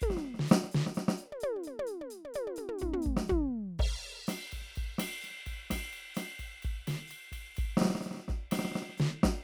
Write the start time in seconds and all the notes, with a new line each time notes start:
0.01 kick, hi-hat pedal, mid tom
0.08 kick, snare
0.17 snare
0.25 snare
0.34 snare
0.39 snare
0.48 snare, hi-hat pedal
0.64 snare
0.72 snare, hi-hat pedal
0.87 snare
0.95 snare, hi-hat pedal
1.08 snare
1.18 hi-hat pedal, high tom
1.32 high tom
1.40 hi-hat pedal, high tom
1.56 high tom
1.64 hi-hat pedal, high tom
1.79 high tom
1.87 hi-hat pedal
2.01 high tom
2.10 hi-hat pedal
2.25 high tom
2.34 hi-hat pedal, high tom
2.47 high tom
2.56 hi-hat pedal, mid tom
2.68 mid tom
2.79 floor tom, hi-hat pedal
2.83 kick
2.88 kick
2.93 floor tom
3.02 kick, hi-hat pedal
3.12 kick
3.17 snare
3.28 kick, hi-hat pedal, floor tom
3.79 kick, hi-hat pedal, crash
3.87 kick
4.27 snare, hi-hat pedal, ride
4.52 kick, ride
4.58 kick, snare
4.75 kick, hi-hat pedal, ride
4.83 kick
4.99 snare, ride
5.21 snare, hi-hat pedal, ride
5.31 snare
5.46 kick, ride
5.52 kick
5.68 kick, snare, hi-hat pedal, ride
5.77 kick
5.93 ride
6.15 snare, hi-hat pedal, ride
6.39 kick, ride
6.62 kick, hi-hat pedal, ride
6.71 kick
6.87 snare, ride
7.08 hi-hat pedal, ride
7.32 kick, ride
7.55 kick, hi-hat pedal, ride
7.65 kick
7.77 snare
7.82 snare
7.85 snare
7.90 snare
7.95 snare
8.01 snare, hi-hat pedal
8.06 snare
8.11 snare
8.15 snare
8.17 snare
8.20 snare
8.28 kick, snare
8.51 snare, ride
8.59 snare
8.65 snare
8.72 snare
8.76 snare
8.82 snare
8.89 snare
8.97 snare, hi-hat pedal
9.00 snare
9.23 kick, snare